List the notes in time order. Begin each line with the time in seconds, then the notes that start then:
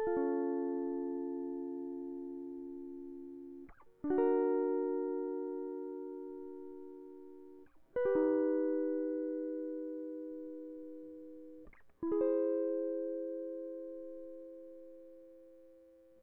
0.00 A4
0.08 F4
0.18 C#4
4.05 D4
4.11 F#4
4.19 A#4
7.97 B4
8.06 G4
8.16 D#4
12.04 E4
12.13 G#4
12.22 C5